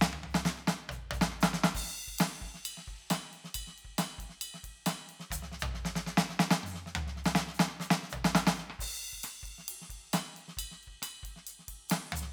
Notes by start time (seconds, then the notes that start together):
0.02 snare
0.14 mid tom
0.24 mid tom
0.31 hi-hat pedal
0.35 snare
0.46 snare
0.51 hi-hat pedal
0.57 snare
0.68 snare, hi-hat pedal
0.90 hi-hat pedal, floor tom
1.12 hi-hat pedal, floor tom
1.22 snare
1.33 cross-stick
1.41 snare, hi-hat pedal
1.54 snare
1.64 snare
1.75 kick, hi-hat pedal, crash
1.83 kick, cross-stick
1.89 kick
2.08 kick
2.14 kick
2.18 kick, snare, hi-hat pedal, ride
2.42 kick, ride
2.55 snare
2.65 hi-hat pedal, ride bell
2.78 snare
2.88 kick, ride
3.11 snare, hi-hat pedal, ride bell
3.34 ride
3.45 snare
3.55 kick, hi-hat pedal, ride bell
3.62 kick
3.68 snare
3.78 ride
3.85 kick
3.99 snare, hi-hat pedal, ride bell
4.19 kick, ride
4.25 kick
4.30 snare
4.42 hi-hat pedal, ride bell
4.55 snare
4.64 kick, ride
4.70 kick
4.87 snare, hi-hat pedal, ride bell
5.10 ride
5.20 snare
5.31 kick, hi-hat pedal, mid tom
5.38 kick
5.43 snare
5.52 snare
5.60 hi-hat pedal, floor tom
5.75 snare
5.86 snare
5.96 snare
6.07 snare
6.18 snare
6.30 snare
6.40 snare
6.51 snare
6.64 hi-hat pedal, high tom
6.75 snare
6.87 snare
6.96 hi-hat pedal, mid tom
7.07 snare
7.17 snare
7.25 snare, hi-hat pedal
7.36 snare
7.39 snare
7.48 snare
7.55 hi-hat pedal
7.60 snare
7.69 cross-stick
7.72 cross-stick
7.81 snare, hi-hat pedal
7.91 snare
8.03 snare
8.11 hi-hat pedal, floor tom
8.25 snare
8.33 kick, snare, hi-hat pedal
8.48 snare
8.55 snare, hi-hat pedal
8.70 cross-stick
8.80 kick, hi-hat pedal, crash
8.87 kick
9.13 kick
9.18 kick
9.24 cross-stick, hi-hat pedal, ride bell
9.44 kick, ride
9.49 kick
9.59 snare
9.69 hi-hat pedal, ride
9.82 snare
9.90 kick, ride
10.14 snare, hi-hat pedal, ride bell
10.37 ride
10.49 snare
10.58 kick, hi-hat pedal, ride bell
10.64 kick
10.72 snare
10.84 ride
10.88 kick
10.93 kick
11.03 cross-stick, hi-hat pedal, ride bell
11.24 kick, ride
11.30 kick
11.37 snare
11.47 hi-hat pedal, ride bell
11.60 snare
11.69 kick, ride
11.90 snare, hi-hat pedal, ride
12.13 hi-hat pedal, mid tom
12.22 snare